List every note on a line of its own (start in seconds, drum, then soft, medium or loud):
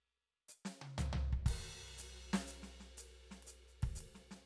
0.49 hi-hat pedal medium
0.65 snare medium
0.81 high tom medium
0.98 floor tom loud
0.98 hi-hat pedal medium
1.13 floor tom medium
1.33 kick soft
1.46 kick medium
1.46 ride medium
1.46 crash medium
1.98 hi-hat pedal medium
1.98 ride medium
2.33 snare medium
2.33 ride medium
2.47 hi-hat pedal medium
2.47 ride soft
2.63 snare soft
2.80 snare soft
2.97 hi-hat pedal medium
2.97 ride medium
3.31 snare soft
3.43 ride soft
3.47 hi-hat pedal medium
3.68 hi-hat pedal soft
3.82 kick medium
3.82 ride medium
3.95 hi-hat pedal medium
4.01 ride soft
4.15 snare soft
4.31 snare soft